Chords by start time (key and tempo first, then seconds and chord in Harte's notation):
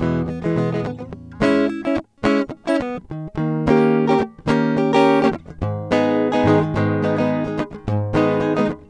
G# minor, 107 BPM
0.00 E:maj
1.14 A#:hdim7(11,*1)/4
3.38 D#:7
5.63 G#:min